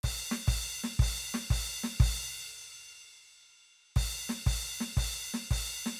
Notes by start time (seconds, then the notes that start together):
0.03 kick, crash
0.31 snare
0.47 kick, crash
0.84 snare
0.99 kick, crash
1.34 snare
1.50 kick, crash
1.84 snare
2.00 kick, crash
3.96 kick, crash
4.29 snare
4.46 kick, crash
4.81 snare
4.97 kick, crash
5.34 snare
5.51 kick, crash
5.86 snare